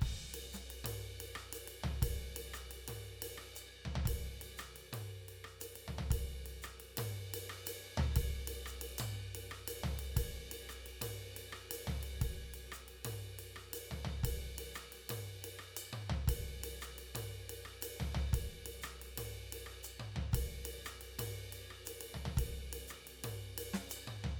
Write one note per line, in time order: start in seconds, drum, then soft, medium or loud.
0.01 kick medium
0.01 ride medium
0.34 ride loud
0.53 snare soft
0.53 hi-hat pedal medium
0.70 ride medium
0.84 mid tom loud
0.84 ride loud
1.20 ride medium
1.35 cross-stick medium
1.52 hi-hat pedal medium
1.52 ride loud
1.67 ride medium
1.83 floor tom loud
2.02 kick medium
2.02 ride loud
2.36 ride loud
2.53 cross-stick medium
2.53 hi-hat pedal medium
2.71 ride medium
2.88 mid tom medium
2.88 ride loud
3.03 hi-hat pedal soft
3.22 ride loud
3.37 cross-stick medium
3.55 hi-hat pedal medium
3.55 ride bell medium
3.85 floor tom medium
3.95 floor tom loud
4.05 kick medium
4.05 ride loud
4.41 ride medium
4.57 cross-stick medium
4.57 hi-hat pedal medium
4.76 ride medium
4.93 mid tom loud
4.93 ride medium
5.28 ride medium
5.44 cross-stick medium
5.60 hi-hat pedal medium
5.60 ride loud
5.75 ride medium
5.88 floor tom medium
5.98 floor tom medium
6.10 kick medium
6.10 ride loud
6.46 ride medium
6.62 cross-stick medium
6.62 hi-hat pedal medium
6.62 ride soft
6.80 ride medium
6.97 mid tom loud
6.97 ride loud
7.34 ride loud
7.49 cross-stick medium
7.65 hi-hat pedal medium
7.65 ride loud
7.97 floor tom loud
8.16 kick medium
8.16 ride loud
8.47 ride loud
8.66 cross-stick medium
8.66 hi-hat pedal medium
8.81 ride loud
8.98 mid tom loud
8.98 ride bell loud
9.35 ride loud
9.51 cross-stick medium
9.67 hi-hat pedal medium
9.67 ride loud
9.83 floor tom loud
9.99 ride medium
10.16 kick medium
10.16 ride loud
10.51 ride loud
10.69 cross-stick medium
10.69 hi-hat pedal medium
10.86 ride medium
11.01 mid tom medium
11.01 ride loud
11.36 ride medium
11.52 cross-stick medium
11.71 hi-hat pedal medium
11.71 ride loud
11.87 floor tom loud
12.03 ride medium
12.21 kick medium
12.21 ride loud
12.54 ride medium
12.72 cross-stick medium
12.72 hi-hat pedal medium
12.88 ride medium
13.04 mid tom loud
13.04 ride loud
13.39 ride medium
13.56 cross-stick medium
13.73 hi-hat pedal medium
13.73 ride loud
13.91 floor tom medium
14.04 floor tom medium
14.23 kick medium
14.23 ride loud
14.58 ride loud
14.74 cross-stick medium
14.74 hi-hat pedal medium
14.92 ride medium
15.09 mid tom loud
15.09 ride loud
15.44 ride loud
15.59 cross-stick medium
15.76 hi-hat pedal medium
15.76 ride bell loud
15.93 mid tom medium
16.09 floor tom loud
16.27 kick medium
16.27 ride loud
16.63 ride loud
16.81 cross-stick medium
16.81 hi-hat pedal medium
16.98 ride medium
17.15 mid tom medium
17.15 ride loud
17.49 ride loud
17.65 cross-stick medium
17.81 hi-hat pedal medium
17.81 ride loud
18.00 floor tom loud
18.14 floor tom loud
18.33 kick medium
18.33 ride loud
18.66 ride loud
18.82 cross-stick medium
18.82 hi-hat pedal medium
19.01 ride medium
19.17 mid tom medium
19.17 ride loud
19.52 ride loud
19.66 cross-stick medium
19.83 hi-hat pedal medium
19.83 ride bell medium
19.99 mid tom medium
20.16 floor tom loud
20.32 kick medium
20.32 hi-hat pedal soft
20.32 ride loud
20.65 ride loud
20.85 cross-stick medium
20.85 hi-hat pedal medium
21.01 ride medium
21.19 mid tom loud
21.19 ride loud
21.52 ride medium
21.70 cross-stick soft
21.85 hi-hat pedal medium
21.85 ride loud
22.01 ride loud
22.14 kick soft
22.14 floor tom medium
22.25 floor tom medium
22.34 kick medium
22.34 hi-hat pedal soft
22.38 ride loud
22.73 ride loud
22.87 cross-stick medium
22.87 hi-hat pedal medium
23.07 ride medium
23.24 mid tom loud
23.24 ride loud
23.58 ride loud
23.73 snare medium
23.89 hi-hat pedal medium
23.89 ride bell medium
24.07 mid tom medium
24.24 floor tom loud